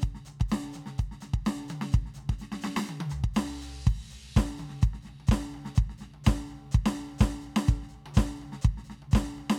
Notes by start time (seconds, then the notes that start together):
0.01 kick, hi-hat pedal, high tom
0.15 snare
0.25 hi-hat pedal, high tom
0.40 kick, high tom
0.48 snare, hi-hat pedal
0.64 high tom
0.73 hi-hat pedal, high tom
0.86 snare
0.98 kick, hi-hat pedal, high tom
1.11 snare
1.21 snare, hi-hat pedal, high tom
1.33 kick, high tom
1.45 snare, hi-hat pedal
1.59 high tom
1.68 hi-hat pedal, high tom
1.81 snare
1.92 kick, hi-hat pedal, high tom
2.06 snare
2.14 hi-hat pedal, high tom
2.29 kick, snare
2.39 snare, hi-hat pedal
2.52 snare
2.61 snare, hi-hat pedal
2.76 snare
2.85 hi-hat pedal, high tom
3.00 high tom
3.10 floor tom, hi-hat pedal
3.24 kick
3.34 snare, hi-hat pedal, crash
3.61 hi-hat pedal
3.87 kick, hi-hat pedal, crash, ride
4.10 hi-hat pedal
4.36 kick, snare, hi-hat pedal
4.48 high tom
4.57 hi-hat pedal, high tom
4.69 snare
4.82 kick, hi-hat pedal, high tom
4.93 snare
5.02 snare, hi-hat pedal
5.08 high tom
5.20 high tom
5.27 kick, hi-hat pedal
5.31 snare
5.43 high tom
5.49 hi-hat pedal
5.54 high tom
5.65 snare
5.75 kick, hi-hat pedal
5.79 high tom
5.90 snare
5.98 snare, hi-hat pedal
6.02 high tom
6.13 high tom
6.24 kick, snare, hi-hat pedal
6.38 high tom
6.47 hi-hat pedal, high tom
6.65 snare
6.71 kick, hi-hat pedal, high tom
6.86 snare
6.93 hi-hat pedal, high tom
7.08 high tom
7.18 kick, snare, hi-hat pedal
7.41 hi-hat pedal
7.46 high tom
7.56 snare
7.67 kick, hi-hat pedal, high tom
7.82 snare
7.89 hi-hat pedal
7.94 high tom
8.06 high tom
8.14 kick, snare, hi-hat pedal
8.30 high tom
8.36 hi-hat pedal
8.42 high tom
8.52 snare
8.61 kick, hi-hat pedal
8.66 high tom
8.77 snare
8.84 hi-hat pedal
8.90 snare, high tom
9.02 high tom
9.11 kick, snare, hi-hat pedal
9.26 high tom
9.35 hi-hat pedal, high tom
9.50 snare